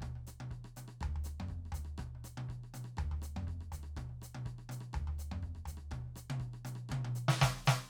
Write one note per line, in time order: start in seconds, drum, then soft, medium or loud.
0.01 kick soft
0.01 cross-stick soft
0.01 high tom medium
0.16 high tom soft
0.19 high tom soft
0.27 cross-stick soft
0.27 hi-hat pedal medium
0.40 high tom medium
0.51 kick soft
0.51 cross-stick soft
0.65 cross-stick soft
0.77 hi-hat pedal medium
0.77 high tom medium
0.88 cross-stick soft
1.01 kick soft
1.01 cross-stick soft
1.01 floor tom loud
1.16 floor tom medium
1.24 cross-stick soft
1.24 hi-hat pedal medium
1.40 mid tom loud
1.49 kick soft
1.49 cross-stick soft
1.65 cross-stick soft
1.72 floor tom medium
1.72 hi-hat pedal medium
1.85 cross-stick soft
1.98 kick soft
1.98 cross-stick medium
1.98 hi-hat pedal soft
1.98 high tom medium
2.06 high tom soft
2.15 high tom soft
2.20 cross-stick soft
2.20 high tom soft
2.25 hi-hat pedal medium
2.38 high tom loud
2.49 kick soft
2.49 cross-stick soft
2.64 cross-stick soft
2.74 hi-hat pedal medium
2.74 high tom medium
2.85 cross-stick soft
2.97 kick soft
2.97 cross-stick soft
2.97 floor tom loud
3.12 floor tom medium
3.22 cross-stick soft
3.22 hi-hat pedal medium
3.37 mid tom loud
3.47 kick soft
3.47 cross-stick soft
3.61 cross-stick soft
3.72 floor tom medium
3.72 hi-hat pedal medium
3.83 cross-stick soft
3.97 kick soft
3.97 cross-stick soft
3.97 hi-hat pedal soft
3.97 high tom medium
4.10 high tom soft
4.22 cross-stick soft
4.22 hi-hat pedal medium
4.35 high tom medium
4.46 kick soft
4.46 cross-stick soft
4.59 cross-stick soft
4.69 hi-hat pedal medium
4.69 high tom medium
4.81 cross-stick soft
4.93 kick soft
4.93 cross-stick soft
4.93 floor tom loud
5.07 floor tom medium
5.19 cross-stick soft
5.19 hi-hat pedal medium
5.32 mid tom medium
5.43 kick soft
5.43 cross-stick soft
5.55 cross-stick soft
5.66 floor tom medium
5.66 hi-hat pedal medium
5.77 cross-stick soft
5.91 kick soft
5.91 cross-stick soft
5.91 high tom medium
6.05 high tom soft
6.08 high tom soft
6.16 cross-stick soft
6.16 hi-hat pedal medium
6.30 high tom loud
6.40 kick soft
6.40 cross-stick soft
6.54 cross-stick soft
6.65 hi-hat pedal medium
6.65 high tom loud
6.76 cross-stick soft
6.89 kick soft
6.89 cross-stick soft
6.89 high tom loud
7.05 high tom loud
7.15 cross-stick soft
7.15 hi-hat pedal medium
7.29 snare loud
7.42 kick medium
7.42 snare loud
7.56 snare soft
7.65 snare loud
7.65 hi-hat pedal medium